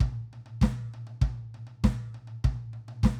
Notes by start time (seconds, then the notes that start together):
0.01 kick, mid tom
0.33 mid tom
0.46 mid tom
0.62 kick, snare, mid tom
0.94 mid tom
1.07 mid tom
1.22 kick, mid tom
1.55 mid tom
1.67 mid tom
1.84 kick, snare, mid tom
2.15 mid tom
2.28 mid tom
2.44 kick, mid tom
2.73 mid tom
2.89 mid tom
3.04 kick, snare, mid tom